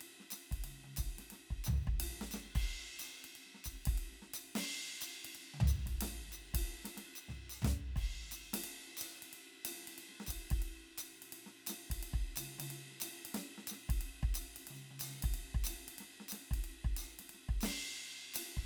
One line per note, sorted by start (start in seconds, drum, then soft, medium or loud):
0.01 ride medium
0.20 snare soft
0.31 snare soft
0.31 hi-hat pedal loud
0.31 ride medium
0.52 kick soft
0.52 ride medium
0.64 high tom soft
0.64 ride medium
0.71 hi-hat pedal soft
0.84 high tom soft
0.97 kick soft
0.97 hi-hat pedal medium
0.97 ride medium
1.19 snare soft
1.19 ride medium
1.30 snare soft
1.30 ride medium
1.51 kick soft
1.64 floor tom medium
1.64 hi-hat pedal loud
1.64 high tom medium
1.87 kick soft
2.00 ride loud
2.21 snare medium
2.31 snare medium
2.31 hi-hat pedal medium
2.45 snare soft
2.55 kick medium
2.55 ride medium
2.99 hi-hat pedal medium
2.99 ride medium
3.24 ride medium
3.35 ride medium
3.46 snare soft
3.55 snare soft
3.64 kick soft
3.64 hi-hat pedal medium
3.64 ride medium
3.76 snare soft
3.86 kick medium
3.86 ride medium
3.98 ride medium
4.12 snare soft
4.22 snare soft
4.34 hi-hat pedal loud
4.34 ride medium
4.55 snare medium
4.55 ride loud
4.93 snare soft
5.01 hi-hat pedal loud
5.01 ride medium
5.25 ride medium
5.35 ride medium
5.42 hi-hat pedal soft
5.54 high tom medium
5.60 floor tom loud
5.68 hi-hat pedal medium
5.86 kick soft
5.86 ride medium
6.01 snare medium
6.01 ride loud
6.08 hi-hat pedal soft
6.28 snare soft
6.32 hi-hat pedal medium
6.54 kick soft
6.54 ride loud
6.85 snare medium
6.85 ride medium
6.97 snare soft
6.97 ride medium
7.16 hi-hat pedal medium
7.29 snare soft
7.29 floor tom soft
7.50 hi-hat pedal medium
7.62 snare medium
7.62 floor tom medium
7.72 hi-hat pedal soft
7.84 snare soft
7.96 kick soft
7.96 ride medium
8.23 snare soft
8.31 hi-hat pedal medium
8.31 ride medium
8.54 snare medium
8.54 ride loud
8.64 ride medium
8.97 hi-hat pedal loud
9.01 ride medium
9.22 ride medium
9.33 ride medium
9.51 snare soft
9.65 hi-hat pedal medium
9.65 ride loud
9.88 ride medium
9.98 ride medium
10.09 snare soft
10.20 snare medium
10.27 kick soft
10.27 hi-hat pedal medium
10.27 ride medium
10.51 kick medium
10.51 ride medium
10.62 ride medium
10.98 hi-hat pedal loud
10.98 ride medium
11.22 ride medium
11.33 ride medium
11.46 snare soft
11.67 snare soft
11.67 hi-hat pedal loud
11.67 ride loud
11.90 kick soft
11.90 ride medium
12.03 ride medium
12.14 kick soft
12.36 hi-hat pedal loud
12.36 high tom soft
12.36 ride loud
12.59 high tom medium
12.59 ride medium
12.70 ride medium
12.91 snare soft
13.00 hi-hat pedal loud
13.00 ride loud
13.25 ride medium
13.34 snare medium
13.34 ride medium
13.58 snare soft
13.67 snare soft
13.67 hi-hat pedal loud
13.67 ride medium
13.89 kick soft
13.89 ride medium
14.01 ride medium
14.23 kick medium
14.34 hi-hat pedal loud
14.34 ride medium
14.56 hi-hat pedal soft
14.56 ride medium
14.67 high tom soft
14.67 ride medium
14.75 hi-hat pedal soft
14.91 high tom soft
15.00 hi-hat pedal loud
15.00 high tom soft
15.00 ride medium
15.23 kick soft
15.23 ride medium
15.34 ride medium
15.55 kick soft
15.64 hi-hat pedal loud
15.64 ride loud
15.88 ride medium
15.98 snare soft
15.98 ride medium
16.20 snare soft
16.29 hi-hat pedal loud
16.29 ride medium
16.33 snare soft
16.51 kick soft
16.51 ride medium
16.64 ride medium
16.85 kick soft
16.97 hi-hat pedal medium
16.97 ride medium
17.19 snare soft
17.19 ride medium
17.30 ride medium
17.34 snare soft
17.49 kick soft
17.61 snare medium
17.61 hi-hat pedal medium
17.61 ride loud
18.34 hi-hat pedal loud
18.34 ride loud
18.57 kick soft